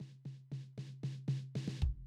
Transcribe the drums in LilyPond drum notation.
\new DrumStaff \drummode { \time 4/4 \tempo 4 = 116 <sn tomfh>8 <sn tomfh>8 <tomfh sn>8 <sn tomfh>8 <sn tomfh>8 <sn tomfh>8 <sn tomfh>16 <sn tomfh>16 bd8 | }